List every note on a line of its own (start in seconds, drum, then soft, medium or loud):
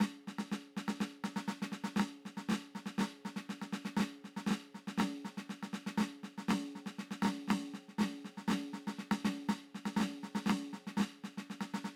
0.00 snare soft
0.00 snare medium
0.27 snare soft
0.39 snare soft
0.52 snare soft
0.77 snare soft
0.88 snare soft
1.00 snare soft
1.24 snare soft
1.36 snare soft
1.48 snare soft
1.62 snare soft
1.72 snare soft
1.84 snare soft
1.96 snare soft
2.00 snare medium
2.25 snare soft
2.37 snare soft
2.49 snare medium
2.51 snare medium
2.75 snare soft
2.86 snare soft
2.98 snare soft
3.01 snare medium
3.25 snare soft
3.36 snare soft
3.49 snare soft
3.62 snare soft
3.73 snare soft
3.85 snare soft
3.97 snare medium
4.00 snare medium
4.24 snare soft
4.36 snare soft
4.51 snare medium
4.74 snare soft
4.87 snare soft
4.98 snare soft
5.00 snare medium
5.25 snare soft
5.37 snare soft
5.49 snare soft
5.63 snare soft
5.73 snare soft
5.86 snare soft
5.98 snare medium
6.00 snare medium
6.23 snare soft
6.38 snare soft
6.48 snare medium
6.51 snare medium
6.75 snare soft
6.86 snare soft
6.99 snare soft
7.11 snare soft
7.22 snare medium
7.25 snare medium
7.48 snare soft
7.50 snare medium
7.74 snare soft
7.88 snare soft
8.01 snare medium
8.25 snare soft
8.37 snare soft
8.48 snare medium
8.50 snare medium
8.73 snare soft
8.87 snare soft
8.99 snare soft
9.11 snare medium
9.25 snare medium
9.49 snare medium
9.75 snare soft
9.86 snare soft
9.97 snare medium
10.00 snare medium
10.23 snare soft
10.35 snare soft
10.46 snare medium
10.50 snare medium
10.73 snare soft
10.87 snare soft
10.97 snare medium
11.00 snare medium
11.24 snare soft
11.38 snare soft
11.50 snare soft
11.61 snare soft
11.74 snare soft
11.84 snare soft